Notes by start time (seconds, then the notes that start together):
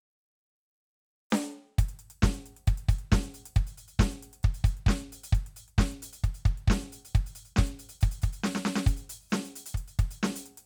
1.30 snare, hi-hat pedal
1.78 kick, closed hi-hat
1.89 closed hi-hat
1.99 closed hi-hat
2.10 closed hi-hat
2.22 kick, snare
2.34 closed hi-hat
2.46 closed hi-hat
2.57 closed hi-hat
2.67 kick, closed hi-hat
2.77 closed hi-hat
2.89 closed hi-hat, kick
2.99 closed hi-hat
3.12 kick, snare
3.23 closed hi-hat
3.34 closed hi-hat
3.46 closed hi-hat
3.56 kick, closed hi-hat
3.67 closed hi-hat
3.77 closed hi-hat
3.88 closed hi-hat
3.99 kick, snare
4.11 closed hi-hat
4.22 closed hi-hat
4.33 closed hi-hat
4.44 kick
4.54 closed hi-hat
4.64 closed hi-hat, kick
4.77 kick, closed hi-hat
4.86 kick, snare
5.00 closed hi-hat
5.12 closed hi-hat
5.23 closed hi-hat
5.32 kick, closed hi-hat
5.46 closed hi-hat
5.56 closed hi-hat
5.68 closed hi-hat
5.78 kick, snare
5.91 closed hi-hat
6.02 closed hi-hat
6.13 closed hi-hat
6.24 kick, closed hi-hat
6.34 closed hi-hat
6.45 kick, closed hi-hat
6.57 closed hi-hat
6.67 kick, snare
6.81 closed hi-hat
6.92 closed hi-hat
7.05 closed hi-hat
7.15 kick, closed hi-hat
7.26 closed hi-hat
7.35 closed hi-hat
7.45 closed hi-hat
7.56 kick, snare
7.66 closed hi-hat
7.79 closed hi-hat
7.89 closed hi-hat
8.01 closed hi-hat, kick
8.11 closed hi-hat
8.22 closed hi-hat, kick
8.33 closed hi-hat
8.44 snare, hi-hat pedal
8.55 snare
8.65 snare
8.76 snare
8.86 closed hi-hat, kick
8.97 closed hi-hat
9.09 closed hi-hat
9.20 open hi-hat
9.30 snare, hi-hat pedal
9.45 closed hi-hat
9.56 closed hi-hat
9.66 closed hi-hat
9.74 kick, closed hi-hat
9.87 closed hi-hat
9.99 kick, closed hi-hat
10.11 closed hi-hat
10.23 snare
10.36 closed hi-hat
10.46 closed hi-hat
10.57 closed hi-hat